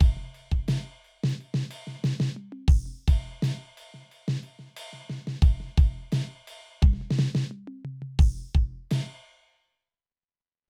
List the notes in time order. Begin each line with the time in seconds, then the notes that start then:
0.01 kick, ride
0.17 floor tom
0.35 ride
0.52 kick
0.69 snare, ride
1.05 ride bell
1.24 snare
1.29 hi-hat pedal
1.41 ride
1.55 snare
1.71 ride bell
1.88 snare
2.04 snare, hi-hat pedal
2.21 snare
2.37 mid tom
2.53 high tom
2.68 kick, crash
2.87 high tom
3.08 kick, ride
3.43 snare, hi-hat pedal, ride
3.78 ride
3.95 snare
4.12 ride
4.29 snare
4.44 ride
4.60 snare
4.77 ride
4.93 snare
5.10 snare
5.28 snare
5.43 kick, ride
5.61 snare
5.78 kick, ride
6.12 snare, ride
6.48 ride
6.83 kick, mid tom
6.94 snare
7.02 mid tom
7.11 snare
7.19 snare
7.36 snare
7.52 mid tom
7.68 high tom
7.85 floor tom
8.03 floor tom
8.19 kick, crash
8.55 kick
8.91 snare, ride